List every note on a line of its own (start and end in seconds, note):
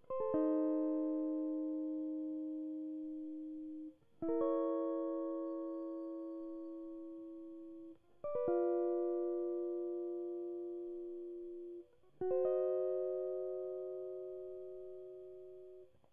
0.10 3.79 C5
0.22 2.72 A4
0.36 3.99 D#4
4.23 8.02 E4
4.29 7.17 A#4
4.42 8.02 C#5
8.25 11.51 D5
8.36 11.42 B4
8.49 11.92 F4
12.07 15.90 F#4
12.31 14.91 C5
12.45 15.91 D#5